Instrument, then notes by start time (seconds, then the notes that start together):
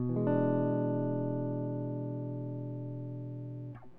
electric guitar
0.00 B2
0.10 E3
0.17 G#3
0.27 D4